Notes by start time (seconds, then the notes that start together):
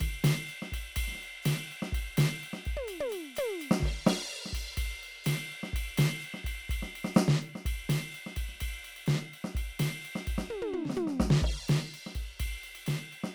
0.01 kick, ride
0.08 kick
0.25 snare, ride
0.48 hi-hat pedal, ride
0.62 snare
0.73 kick, ride
0.96 kick, ride
1.08 snare
1.12 snare
1.15 snare
1.23 ride
1.43 snare, hi-hat pedal, ride
1.72 ride
1.83 snare
1.93 kick, hi-hat pedal, ride bell
1.99 kick
2.18 snare, ride bell
2.39 hi-hat pedal
2.44 ride
2.54 snare
2.66 kick, ride bell
2.77 high tom
2.88 hi-hat pedal, ride
3.01 high tom
3.10 hi-hat pedal, ride
3.36 hi-hat pedal, high tom, ride
3.60 hi-hat pedal, ride
3.71 snare
3.80 kick, snare
3.85 hi-hat pedal, crash
4.07 snare, crash
4.46 snare
4.53 kick, hi-hat pedal, ride
4.78 kick, ride
4.85 kick
5.03 ride
5.24 snare, hi-hat pedal, ride
5.52 ride
5.64 snare
5.74 kick, hi-hat pedal, ride
5.98 snare, ride bell
6.20 hi-hat pedal
6.25 ride
6.34 snare
6.45 kick, ride bell
6.69 kick, hi-hat pedal, ride
6.76 kick
6.83 snare
6.96 ride
7.05 snare
7.15 snare, hi-hat pedal
7.28 snare
7.43 ride
7.56 snare
7.66 kick, hi-hat pedal, ride
7.72 kick
7.74 kick
7.90 snare, ride
8.12 hi-hat pedal, ride
8.27 snare
8.37 kick, ride
8.49 snare
8.56 snare
8.61 kick, hi-hat pedal, ride
8.85 ride
8.97 ride
9.07 snare, hi-hat pedal
9.15 snare
9.34 ride
9.45 snare
9.55 kick, hi-hat pedal, ride
9.61 kick
9.80 snare, ride
10.02 hi-hat pedal, ride
10.16 snare
10.27 kick, ride
10.38 snare
10.47 kick, mid tom
10.62 mid tom
10.73 floor tom
10.86 snare
10.90 snare
10.95 hi-hat pedal, floor tom
11.08 snare
11.20 kick, snare
11.31 snare
11.42 kick, hi-hat pedal, crash
11.49 kick
11.69 snare, ride bell
11.78 snare
11.94 ride
12.07 snare
12.15 kick, ride bell
12.40 kick, ride
12.46 kick
12.64 ride
12.75 ride
12.87 snare, hi-hat pedal, ride bell
13.10 hi-hat pedal, ride
13.24 snare